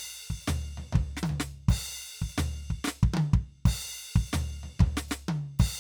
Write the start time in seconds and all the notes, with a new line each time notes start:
0.31 kick
0.42 hi-hat pedal
0.48 snare, floor tom
0.78 floor tom
0.93 kick, floor tom
1.18 snare
1.24 hi-hat pedal, high tom
1.30 floor tom
1.41 snare
1.69 kick, crash
2.23 kick
2.30 hi-hat pedal
2.39 snare, floor tom
2.71 kick
2.85 snare
2.88 snare
3.04 kick
3.15 high tom
3.18 high tom
3.34 kick
3.66 kick, crash
4.17 kick
4.27 hi-hat pedal
4.34 snare, floor tom
4.64 floor tom
4.80 kick, floor tom
4.98 snare
5.09 snare, hi-hat pedal
5.29 high tom
5.60 kick, crash